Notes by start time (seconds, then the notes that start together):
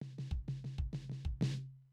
0.01 snare, floor tom
0.18 snare, floor tom
0.31 kick
0.48 snare, floor tom
0.64 snare, floor tom
0.78 kick
0.93 snare, floor tom
1.10 snare, floor tom
1.25 kick
1.41 snare, floor tom